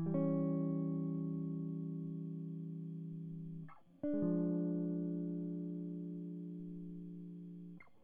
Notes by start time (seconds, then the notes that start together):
0.00 E3
0.07 G3
0.15 C#4
4.04 D4
4.14 G#3
4.23 F3